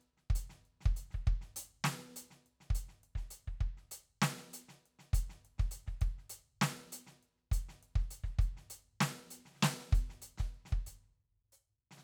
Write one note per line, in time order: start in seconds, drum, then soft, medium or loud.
0.01 closed hi-hat soft
0.17 snare soft
0.30 kick medium
0.35 closed hi-hat medium
0.49 snare soft
0.65 closed hi-hat soft
0.81 snare soft
0.86 kick medium
0.96 closed hi-hat soft
1.11 kick soft
1.11 snare soft
1.26 kick medium
1.26 closed hi-hat soft
1.41 snare soft
1.56 closed hi-hat medium
1.84 snare loud
1.99 snare soft
2.03 snare soft
2.16 closed hi-hat medium
2.31 snare soft
2.46 closed hi-hat soft
2.60 snare soft
2.70 kick medium
2.75 closed hi-hat medium
2.89 snare soft
3.03 closed hi-hat soft
3.15 kick soft
3.15 snare soft
3.31 closed hi-hat medium
3.47 kick soft
3.47 snare soft
3.61 kick medium
3.65 closed hi-hat soft
3.77 snare soft
3.91 closed hi-hat medium
4.22 snare loud
4.38 snare soft
4.53 closed hi-hat medium
4.69 snare soft
4.86 closed hi-hat soft
4.99 snare soft
5.13 closed hi-hat medium
5.13 kick medium
5.29 snare soft
5.45 closed hi-hat soft
5.58 kick medium
5.58 snare soft
5.71 closed hi-hat medium
5.87 kick soft
5.87 snare soft
6.01 kick medium
6.01 closed hi-hat soft
6.18 snare soft
6.30 closed hi-hat medium
6.61 snare loud
6.68 snare soft
6.80 snare soft
6.92 closed hi-hat medium
7.07 snare soft
7.23 closed hi-hat soft
7.37 snare soft
7.52 closed hi-hat medium
7.52 kick medium
7.69 snare soft
7.83 closed hi-hat soft
7.96 kick medium
7.96 snare soft
8.11 closed hi-hat medium
8.24 kick soft
8.24 snare soft
8.39 closed hi-hat soft
8.39 kick medium
8.57 snare soft
8.70 closed hi-hat medium
9.01 snare loud
9.30 closed hi-hat medium
9.45 snare soft
9.51 snare soft
9.55 snare soft
9.58 snare soft
9.62 snare loud
9.80 snare soft
9.93 closed hi-hat soft
9.93 kick medium
10.10 snare soft
10.22 closed hi-hat medium
10.38 kick soft
10.38 snare soft
10.55 closed hi-hat soft
10.65 snare soft
10.72 kick medium
10.86 closed hi-hat medium
10.86 kick soft
11.03 snare soft
11.52 hi-hat pedal soft
11.91 snare soft
11.97 snare soft